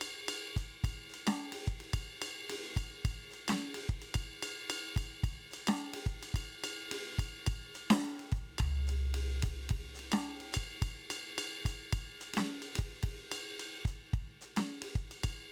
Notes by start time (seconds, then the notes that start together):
0.01 hi-hat pedal, ride bell
0.29 ride bell
0.57 kick, hi-hat pedal, ride bell
0.84 kick, ride bell
0.90 kick
1.10 hi-hat pedal
1.14 ride bell
1.28 snare, ride bell
1.53 ride
1.67 kick, hi-hat pedal
1.81 ride
1.94 kick, ride bell
2.22 hi-hat pedal, ride bell
2.50 ride
2.77 kick, hi-hat pedal, ride bell
3.05 kick, ride bell
3.11 kick
3.31 hi-hat pedal, ride bell
3.49 snare, ride bell
3.75 ride
3.89 kick, hi-hat pedal
4.02 ride bell
4.15 kick, ride bell
4.43 hi-hat pedal, ride bell
4.70 ride bell
4.97 kick, hi-hat pedal, ride bell
5.24 kick, ride bell
5.33 kick
5.52 hi-hat pedal, ride bell
5.68 snare, ride bell
5.94 ride
6.07 kick, hi-hat pedal
6.23 ride bell
6.35 kick, ride bell
6.64 hi-hat pedal, ride bell
6.92 ride
7.19 kick, hi-hat pedal, ride bell
7.47 kick, ride bell
7.54 kick
7.75 hi-hat pedal, ride bell
7.91 snare
8.05 ride
8.20 ride
8.33 kick, hi-hat pedal, ride, floor tom
8.39 kick
8.59 kick, floor tom, ride bell
8.88 hi-hat pedal, ride
9.15 ride
9.43 kick, hi-hat pedal, ride
9.70 kick, ride
9.77 kick
9.95 hi-hat pedal
10.00 ride
10.13 snare, ride bell
10.41 ride
10.53 hi-hat pedal, ride bell
10.57 kick
10.83 kick, ride bell
11.11 hi-hat pedal, ride bell
11.39 ride bell
11.66 kick, hi-hat pedal, ride bell
11.93 kick, ride bell
12.21 hi-hat pedal, ride bell
12.34 snare, ride
12.63 ride bell
12.76 kick, hi-hat pedal, ride
13.03 kick, ride
13.32 hi-hat pedal, ride bell
13.60 ride bell
13.86 kick, hi-hat pedal, ride bell
14.14 kick, ride bell
14.23 kick
14.42 hi-hat pedal, ride
14.57 snare, ride bell
14.83 ride
14.96 kick, hi-hat pedal
15.12 ride bell
15.24 kick, ride bell